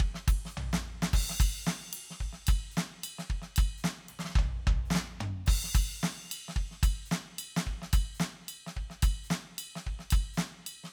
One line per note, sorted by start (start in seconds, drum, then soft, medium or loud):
0.01 kick loud
0.15 snare medium
0.29 kick loud
0.29 ride loud
0.46 snare medium
0.50 hi-hat pedal soft
0.58 floor tom loud
0.74 snare loud
1.03 snare loud
1.14 kick loud
1.14 crash loud
1.31 snare medium
1.41 kick loud
1.41 ride bell loud
1.64 hi-hat pedal soft
1.68 snare loud
1.94 ride loud
2.11 snare medium
2.21 kick medium
2.34 snare soft
2.48 kick loud
2.48 ride bell loud
2.72 hi-hat pedal soft
2.78 snare loud
3.05 ride bell loud
3.20 snare medium
3.31 kick medium
3.43 snare medium
3.57 kick loud
3.57 ride bell loud
3.79 hi-hat pedal soft
3.85 snare loud
4.10 ride medium
4.10 floor tom soft
4.20 snare medium
4.25 snare medium
4.30 snare medium
4.35 kick loud
4.35 snare soft
4.40 snare soft
4.40 floor tom loud
4.68 kick loud
4.68 floor tom loud
4.86 hi-hat pedal soft
4.91 snare loud
4.96 snare loud
5.21 high tom loud
5.47 kick loud
5.47 crash loud
5.65 snare soft
5.76 kick loud
5.76 ride bell loud
6.00 snare loud
6.00 hi-hat pedal soft
6.32 ride bell loud
6.49 snare medium
6.57 kick medium
6.72 snare soft
6.84 kick loud
6.84 ride bell loud
7.06 hi-hat pedal soft
7.12 snare loud
7.39 ride bell loud
7.57 snare loud
7.68 kick medium
7.83 snare medium
7.94 kick loud
7.94 ride bell loud
8.15 hi-hat pedal soft
8.21 snare loud
8.49 ride bell loud
8.68 snare medium
8.77 kick medium
8.91 snare soft
9.04 kick loud
9.04 ride bell loud
9.25 hi-hat pedal soft
9.31 snare loud
9.59 ride bell loud
9.77 snare medium
9.87 kick medium
10.00 snare soft
10.12 kick loud
10.12 ride bell loud
10.35 snare loud
10.35 hi-hat pedal soft
10.67 ride bell loud
10.85 snare medium